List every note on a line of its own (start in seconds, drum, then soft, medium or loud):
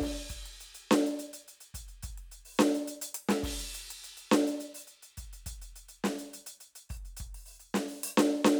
0.01 kick soft
0.01 crash medium
0.07 kick soft
0.29 closed hi-hat medium
0.29 kick soft
0.46 closed hi-hat soft
0.53 closed hi-hat soft
0.60 closed hi-hat medium
0.75 closed hi-hat medium
0.91 snare loud
1.06 closed hi-hat soft
1.19 closed hi-hat medium
1.33 closed hi-hat medium
1.48 closed hi-hat soft
1.61 closed hi-hat medium
1.74 closed hi-hat medium
1.74 kick soft
1.88 closed hi-hat soft
2.03 closed hi-hat medium
2.03 kick soft
2.18 closed hi-hat soft
2.32 closed hi-hat medium
2.45 open hi-hat medium
2.59 snare loud
2.72 closed hi-hat medium
2.72 hi-hat pedal soft
2.88 closed hi-hat medium
3.02 closed hi-hat loud
3.15 closed hi-hat loud
3.29 snare loud
3.43 kick soft
3.43 crash loud
3.59 closed hi-hat medium
3.74 closed hi-hat medium
3.91 closed hi-hat medium
4.04 closed hi-hat medium
4.17 closed hi-hat medium
4.32 snare loud
4.47 closed hi-hat medium
4.60 closed hi-hat medium
4.74 open hi-hat medium
4.87 closed hi-hat soft
5.03 closed hi-hat soft
5.17 closed hi-hat medium
5.17 kick soft
5.33 closed hi-hat soft
5.46 closed hi-hat medium
5.46 kick soft
5.62 closed hi-hat medium
5.76 closed hi-hat soft
5.89 closed hi-hat medium
6.04 snare loud
6.19 closed hi-hat medium
6.33 closed hi-hat medium
6.46 closed hi-hat medium
6.60 closed hi-hat medium
6.75 closed hi-hat medium
6.89 open hi-hat medium
6.89 kick soft
6.94 hi-hat pedal soft
7.05 closed hi-hat soft
7.17 closed hi-hat medium
7.17 kick soft
7.34 open hi-hat medium
7.46 open hi-hat medium
7.60 open hi-hat medium
7.74 snare loud
7.88 open hi-hat medium
8.03 open hi-hat loud
8.08 hi-hat pedal soft
8.17 snare loud
8.45 snare loud